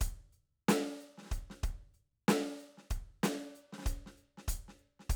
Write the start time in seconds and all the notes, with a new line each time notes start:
0.01 closed hi-hat, kick
0.33 closed hi-hat
0.69 closed hi-hat, snare
1.00 closed hi-hat
1.18 snare
1.22 snare
1.25 snare
1.27 snare
1.32 closed hi-hat, kick
1.50 snare
1.63 closed hi-hat, kick
1.94 closed hi-hat
2.28 closed hi-hat, snare
2.60 closed hi-hat
2.78 snare
2.82 snare
2.91 closed hi-hat, kick
3.23 closed hi-hat, snare
3.55 closed hi-hat
3.73 snare
3.78 snare
3.81 snare
3.84 closed hi-hat, kick, snare
4.06 snare
4.17 closed hi-hat
4.38 snare
4.48 closed hi-hat, kick
4.68 snare
4.79 closed hi-hat
5.00 snare
5.10 closed hi-hat, kick